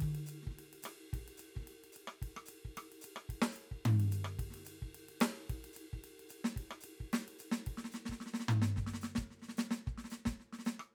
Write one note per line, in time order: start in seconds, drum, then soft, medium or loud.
0.01 kick soft
0.01 ride medium
0.15 ride soft
0.26 hi-hat pedal soft
0.26 ride medium
0.43 snare soft
0.47 kick soft
0.47 snare soft
0.57 snare soft
0.57 ride medium
0.61 snare soft
0.73 ride soft
0.83 cross-stick medium
0.83 hi-hat pedal medium
0.83 ride medium
1.13 kick soft
1.13 snare soft
1.13 ride medium
1.21 kick soft
1.28 ride soft
1.38 hi-hat pedal soft
1.38 ride medium
1.55 kick soft
1.55 snare soft
1.60 kick soft
1.60 snare soft
1.64 snare soft
1.64 ride medium
1.84 ride soft
1.93 hi-hat pedal soft
1.93 ride medium
2.08 cross-stick medium
2.22 kick soft
2.22 ride medium
2.37 cross-stick medium
2.46 hi-hat pedal soft
2.46 ride medium
2.65 kick soft
2.77 cross-stick medium
2.77 ride medium
2.92 ride soft
3.02 hi-hat pedal medium
3.02 ride medium
3.16 cross-stick medium
3.29 kick soft
3.29 ride medium
3.42 snare medium
3.52 hi-hat pedal soft
3.52 ride medium
3.72 kick soft
3.86 floor tom loud
3.86 ride medium
4.00 ride medium
4.12 hi-hat pedal soft
4.12 ride medium
4.25 cross-stick medium
4.39 kick soft
4.39 ride medium
4.51 snare soft
4.51 ride medium
4.56 snare soft
4.60 snare soft
4.64 snare soft
4.64 hi-hat pedal soft
4.64 ride medium
4.82 kick soft
4.95 ride medium
5.09 ride soft
5.21 snare loud
5.21 hi-hat pedal soft
5.21 ride medium
5.50 kick soft
5.50 snare soft
5.50 ride medium
5.65 snare soft
5.65 ride soft
5.74 hi-hat pedal soft
5.74 ride medium
5.93 kick soft
6.04 ride medium
6.20 ride soft
6.29 hi-hat pedal soft
6.29 ride medium
6.45 snare medium
6.57 kick soft
6.57 ride medium
6.71 cross-stick medium
6.81 hi-hat pedal soft
6.81 ride medium
7.01 kick soft
7.13 snare medium
7.13 ride medium
7.28 ride soft
7.39 hi-hat pedal soft
7.39 ride medium
7.52 snare medium
7.67 kick soft
7.67 ride medium
7.78 snare soft
7.85 snare soft
7.92 snare soft
7.92 hi-hat pedal soft
8.06 kick soft
8.06 snare medium
8.12 snare soft
8.21 snare soft
8.26 snare soft
8.33 snare soft
8.33 snare medium
8.40 snare soft
8.49 hi-hat pedal soft
8.49 floor tom loud
8.62 snare medium
8.76 kick soft
8.76 snare soft
8.84 kick soft
8.84 snare soft
8.94 snare soft
9.02 snare medium
9.02 hi-hat pedal soft
9.15 kick soft
9.15 snare medium
9.31 snare soft
9.38 snare soft
9.42 snare soft
9.49 snare soft
9.57 snare medium
9.57 hi-hat pedal medium
9.71 snare medium
9.87 kick soft
9.87 snare soft
9.94 kick soft
9.98 snare soft
10.05 snare soft
10.10 snare soft
10.10 hi-hat pedal medium
10.26 kick soft
10.26 snare medium
10.32 kick soft
10.40 snare soft
10.53 snare soft
10.59 snare soft
10.65 snare medium
10.65 hi-hat pedal soft
10.80 cross-stick medium